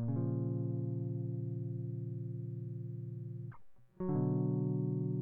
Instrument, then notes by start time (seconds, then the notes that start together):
electric guitar
0.00 A#2
0.09 C#3
0.16 F3
4.00 F#3
4.09 D3
4.16 B2